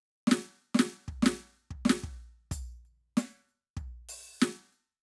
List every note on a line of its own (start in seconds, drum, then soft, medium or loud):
0.29 snare loud
0.33 snare loud
0.76 snare loud
0.80 snare loud
1.09 kick medium
1.24 snare loud
1.27 snare loud
1.72 kick medium
1.87 snare loud
1.91 snare loud
2.05 kick medium
2.53 kick medium
2.53 percussion loud
2.86 percussion soft
3.18 snare loud
3.18 percussion medium
3.50 percussion soft
3.78 kick medium
3.78 percussion soft
4.10 percussion loud
4.41 snare loud
4.41 percussion medium
4.43 percussion soft
4.74 percussion soft